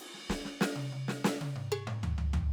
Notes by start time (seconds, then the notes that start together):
0.00 ride
0.14 snare
0.18 snare
0.22 snare
0.25 snare
0.29 kick, snare
0.45 snare
0.61 snare
0.76 high tom
0.92 high tom
1.08 snare
1.24 snare
1.41 open hi-hat, high tom
1.56 mid tom
1.72 percussion
1.87 mid tom
2.03 floor tom
2.18 floor tom
2.33 floor tom